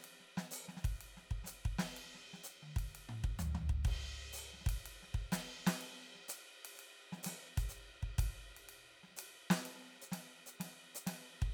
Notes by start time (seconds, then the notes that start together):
0.01 hi-hat pedal, ride
0.20 snare
0.37 snare
0.51 hi-hat pedal, ride
0.68 snare
0.77 snare
0.84 kick, ride
0.95 hi-hat pedal
1.01 ride
1.17 snare
1.31 kick
1.44 snare, hi-hat pedal, ride
1.65 kick
1.79 snare, ride
1.90 hi-hat pedal
1.97 ride
2.15 snare
2.33 snare
2.44 hi-hat pedal
2.48 ride
2.62 high tom
2.76 kick, ride
2.87 hi-hat pedal
2.95 ride
3.09 mid tom
3.24 kick
3.39 floor tom, hi-hat pedal
3.55 floor tom
3.69 kick
3.84 kick, hi-hat pedal, ride
4.03 snare
4.33 hi-hat pedal
4.39 ride
4.53 snare
4.61 snare
4.66 kick, ride
4.78 hi-hat pedal
4.86 ride
5.02 snare
5.14 kick
5.32 snare, hi-hat pedal, ride
5.67 snare, ride
5.79 hi-hat pedal, ride
6.15 snare
6.28 hi-hat pedal, ride
6.65 ride
6.75 hi-hat pedal
6.79 ride
7.12 snare
7.23 snare, hi-hat pedal, ride
7.57 open hi-hat, kick, ride
7.69 hi-hat pedal, ride
8.03 kick
8.18 kick, open hi-hat, ride
8.57 ride
8.69 ride
9.03 snare
9.08 snare
9.11 snare
9.17 hi-hat pedal, ride
9.50 snare, ride
9.65 ride
10.02 hi-hat pedal
10.12 snare, ride
10.46 hi-hat pedal
10.60 snare, ride
10.95 hi-hat pedal
11.06 snare, ride
11.42 kick